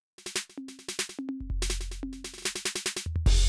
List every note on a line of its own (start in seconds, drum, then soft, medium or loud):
0.18 snare soft
0.26 snare medium
0.36 snare loud
0.49 snare soft
0.58 high tom loud
0.68 snare medium
0.68 hi-hat pedal soft
0.79 snare soft
0.88 snare loud
0.99 snare loud
1.09 snare medium
1.19 high tom loud
1.41 kick soft
1.50 kick medium
1.62 snare loud
1.70 snare loud
1.81 snare medium
1.91 snare medium
2.03 high tom loud
2.13 snare soft
2.24 snare medium
2.34 snare medium
2.38 snare medium
2.42 snare soft
2.45 snare loud
2.56 snare loud
2.65 snare loud
2.75 snare loud
2.86 snare loud
2.96 snare loud
3.06 floor tom loud
3.16 floor tom loud
3.26 kick loud
3.26 ride loud